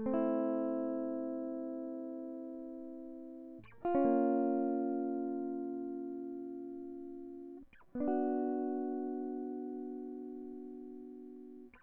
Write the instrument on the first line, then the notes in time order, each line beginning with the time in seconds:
electric guitar
0.00 A3
0.07 C4
0.14 E4
3.86 F4
3.96 C#4
4.06 A#3
7.96 B3
8.01 D4
8.08 F#4